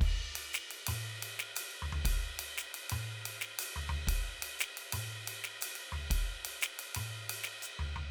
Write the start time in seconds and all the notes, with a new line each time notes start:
0.01 kick, ride
0.35 ride
0.53 snare, hi-hat pedal
0.71 ride
0.87 mid tom, ride
1.23 ride
1.39 snare
1.56 hi-hat pedal, ride
1.71 ride
1.82 floor tom
1.92 floor tom
2.05 kick, ride
2.39 ride
2.58 snare, hi-hat pedal
2.74 ride
2.90 mid tom, ride
3.26 ride
3.41 snare
3.59 hi-hat pedal, ride
3.76 floor tom
3.89 floor tom
4.07 kick, ride
4.42 ride
4.59 snare, hi-hat pedal
4.77 ride
4.93 mid tom, ride
5.28 ride
5.44 snare
5.61 hi-hat pedal, ride
5.76 ride
5.92 floor tom
6.10 kick, ride
6.45 ride
6.61 snare, hi-hat pedal
6.79 ride
6.95 mid tom, ride
7.30 ride
7.44 snare
7.62 hi-hat pedal, ride bell
7.79 floor tom
7.96 floor tom